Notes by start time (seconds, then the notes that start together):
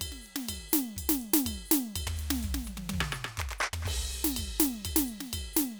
0.01 kick, ride bell
0.07 kick
0.12 snare
0.21 hi-hat pedal
0.26 ride
0.36 snare
0.49 kick, ride bell
0.55 kick
0.69 hi-hat pedal
0.73 snare
0.97 kick, ride bell
1.02 kick
1.09 snare
1.18 hi-hat pedal
1.22 ride
1.34 snare
1.46 kick, ride bell
1.51 kick
1.66 hi-hat pedal
1.71 snare
1.96 kick, ride bell
2.02 kick
2.07 floor tom
2.16 hi-hat pedal, ride
2.31 snare
2.43 kick, ride bell
2.51 kick, snare
2.64 hi-hat pedal, high tom
2.89 high tom
2.94 kick
3.00 kick, cross-stick
3.12 cross-stick, hi-hat pedal
3.24 cross-stick
3.37 kick, percussion
3.45 kick
3.49 percussion
3.58 percussion, hi-hat pedal
3.73 floor tom
3.82 kick, percussion
3.87 crash
4.00 kick
4.11 hi-hat pedal
4.24 snare
4.33 hi-hat pedal, ride bell
4.39 kick
4.44 kick
4.59 snare, hi-hat pedal
4.85 kick, ride bell
4.96 snare
5.06 hi-hat pedal, ride
5.21 snare
5.33 kick, ride bell
5.40 kick
5.53 snare, hi-hat pedal